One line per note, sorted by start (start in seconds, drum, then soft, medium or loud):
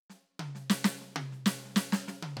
0.10 snare soft
0.39 high tom loud
0.55 snare soft
0.70 snare loud
0.84 snare loud
1.01 snare soft
1.16 high tom loud
1.32 snare soft
1.46 snare loud
1.58 snare soft
1.65 snare soft
1.69 snare soft
1.76 snare loud
1.92 snare loud
2.08 snare medium
2.23 high tom loud
2.37 mid tom loud